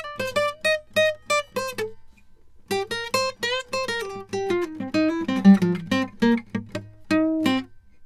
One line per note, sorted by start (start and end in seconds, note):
0.00 0.23 D5
0.20 0.34 C5
0.37 0.55 D5
0.65 0.83 D#5
0.97 1.18 D#5
1.31 1.46 D5
1.57 1.75 C5
2.71 2.87 G4
2.92 3.11 A#4
3.15 3.35 C5
3.44 3.54 A#4
3.44 3.59 B4
3.44 3.64 B4
3.74 3.93 C5
3.74 3.88 C5
3.89 4.00 A#4
4.00 4.26 G4
4.34 4.55 G4
4.51 4.64 F4
4.64 4.83 D#4
4.81 4.93 C4
4.95 5.09 D#4
5.10 5.28 E4
5.29 5.49 C4
5.45 5.52 G3
5.63 5.79 F3
5.92 6.09 C4
6.23 6.42 A#3
7.11 7.55 D#4
7.47 7.65 C4